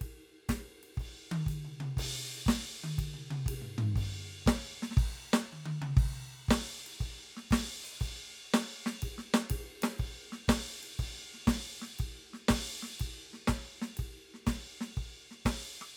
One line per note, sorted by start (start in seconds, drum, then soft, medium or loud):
0.01 kick soft
0.01 ride medium
0.49 kick medium
0.49 snare medium
0.49 hi-hat pedal medium
0.49 ride loud
0.83 ride soft
0.94 kick medium
0.94 hi-hat pedal soft
1.00 ride medium
1.32 high tom loud
1.46 kick medium
1.46 hi-hat pedal soft
1.46 ride medium
1.65 mid tom medium
1.80 mid tom loud
1.97 kick medium
1.97 ride loud
2.46 kick medium
2.46 snare loud
2.46 hi-hat pedal medium
2.46 ride medium
2.84 high tom loud
2.98 kick medium
2.98 ride medium
3.14 mid tom medium
3.31 mid tom loud
3.46 kick medium
3.46 hi-hat pedal soft
3.46 ride loud
3.62 floor tom medium
3.78 floor tom loud
3.96 kick medium
3.96 ride medium
4.46 kick medium
4.46 snare loud
4.46 ride medium
4.83 snare medium
4.91 snare soft
4.97 kick loud
4.97 crash medium
5.33 snare loud
5.53 high tom medium
5.66 high tom loud
5.82 mid tom loud
5.97 kick loud
5.97 crash medium
6.16 closed hi-hat soft
6.49 kick medium
6.49 snare loud
6.49 ride loud
6.86 ride medium
7.01 kick medium
7.01 ride medium
7.37 snare soft
7.50 kick medium
7.50 snare loud
7.50 hi-hat pedal soft
7.50 ride loud
7.84 open hi-hat medium
8.00 kick medium
8.00 hi-hat pedal medium
8.00 ride medium
8.46 hi-hat pedal soft
8.54 snare loud
8.54 ride medium
8.86 snare medium
9.02 kick medium
9.02 ride medium
9.18 snare soft
9.34 snare loud
9.50 kick medium
9.50 ride loud
9.82 snare loud
9.82 ride loud
9.99 kick medium
9.99 ride medium
10.32 snare medium
10.48 kick medium
10.48 snare loud
10.48 hi-hat pedal soft
10.48 ride loud
10.83 ride medium
10.99 kick medium
10.99 ride medium
11.34 snare soft
11.47 kick medium
11.47 snare loud
11.47 hi-hat pedal medium
11.47 ride medium
11.82 snare soft
11.99 kick medium
11.99 ride medium
12.34 snare soft
12.49 kick medium
12.49 snare loud
12.49 hi-hat pedal medium
12.49 ride loud
12.83 snare soft
13.00 kick medium
13.00 ride medium
13.33 snare soft
13.48 kick medium
13.48 snare loud
13.48 hi-hat pedal medium
13.48 ride medium
13.82 snare medium
13.97 kick medium
13.97 ride medium
14.34 snare soft
14.47 kick medium
14.47 snare loud
14.47 hi-hat pedal medium
14.47 ride medium
14.81 snare medium
14.92 hi-hat pedal soft
14.97 kick medium
14.97 ride medium
15.31 snare soft
15.45 kick medium
15.45 snare loud
15.45 hi-hat pedal medium
15.45 ride medium
15.81 cross-stick medium